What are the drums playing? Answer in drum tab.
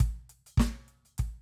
HH |x-xx--xxx-------|
SD |----o-----------|
BD |o---o---o-------|